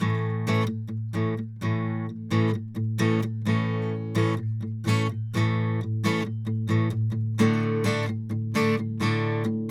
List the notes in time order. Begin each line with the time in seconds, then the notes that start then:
0.01 A2 E3 A3 C#4
0.48 A2 E3 A3 C#4
0.68 A2
0.89 A2
1.14 A2 E3 A3
1.40 A2
1.62 A2 E3 A3
2.32 A2 E3 A3 C#4
2.56 A2
2.76 A2
2.99 A2 E3 A3
3.03 C#4
3.24 A2
3.47 A2 E3 A3 C#4
4.16 A2 E3 A3 C#4
4.38 A2
4.62 A2
4.86 A2 E3 A3 C#4
4.91 E4
5.11 A2
5.35 A2 E3 A3
6.05 A2 E3 A3 C#4
6.26 A2
6.47 A2
6.70 A2 E3 A3
6.91 A2
7.13 A2 D3
7.40 A2 D3 A3
7.85 D3 A3 D4
8.09 A2 D3
8.31 A2 D3
8.56 D3 A3 D4
8.79 A2
9.01 A2 D3 A3 D4
9.45 A2